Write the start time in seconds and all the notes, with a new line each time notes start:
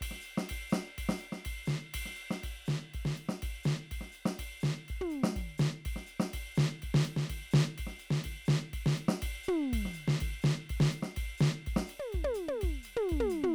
0.01 kick, ride
0.11 snare
0.21 hi-hat pedal
0.25 ride
0.38 snare
0.49 kick, ride bell
0.69 snare, hi-hat pedal
0.98 kick, ride bell
1.09 snare
1.17 hi-hat pedal, ride
1.32 snare
1.45 kick, ride bell
1.65 snare, hi-hat pedal
1.94 kick, ride bell
2.00 kick
2.06 snare
2.15 hi-hat pedal, ride
2.31 snare
2.43 kick, ride bell
2.49 kick
2.66 snare, hi-hat pedal
2.93 kick, ride bell
3.05 snare
3.15 hi-hat pedal, ride
3.29 snare
3.42 kick, ride bell
3.63 snare, hi-hat pedal
3.91 kick, ride bell
3.97 kick
4.01 snare
4.12 hi-hat pedal, ride
4.26 snare
4.39 kick, ride bell
4.60 snare, hi-hat pedal
4.88 kick, ride bell
5.00 floor tom
5.10 hi-hat pedal, ride bell
5.23 snare
5.36 kick, ride bell
5.58 snare, hi-hat pedal
5.85 kick, ride bell
5.96 snare
6.07 hi-hat pedal, ride
6.20 snare
6.33 kick, ride bell
6.55 snare, hi-hat pedal
6.82 kick, ride bell
6.88 kick
6.94 snare
7.03 hi-hat pedal, ride
7.16 snare
7.30 kick, ride bell
7.51 snare, hi-hat pedal
7.78 kick, ride bell
7.87 snare
7.99 hi-hat pedal, ride
8.10 snare
8.24 kick, ride bell
8.31 kick
8.45 snare, hi-hat pedal
8.73 kick, ride bell
8.86 snare
8.93 hi-hat pedal, ride
9.08 snare
9.22 kick, ride bell
9.44 hi-hat pedal
9.48 floor tom
9.73 kick, ride bell
9.79 kick
9.85 snare
9.93 hi-hat pedal, ride
10.08 snare
10.20 kick, ride bell
10.27 kick
10.42 snare, hi-hat pedal
10.64 hi-hat pedal
10.69 kick, ride bell
10.76 kick
10.80 snare
10.90 hi-hat pedal, ride
11.03 snare
11.16 kick, ride
11.23 kick
11.38 snare, hi-hat pedal
11.66 kick, ride bell
11.73 kick, snare
11.87 hi-hat pedal, ride
11.99 high tom
12.12 kick, ride bell
12.20 kick
12.24 high tom
12.34 hi-hat pedal, ride
12.48 high tom
12.61 kick, ride bell
12.69 kick
12.83 hi-hat pedal, ride
12.96 mid tom
13.09 kick, ride bell
13.18 kick, mid tom
13.30 hi-hat pedal, ride
13.43 floor tom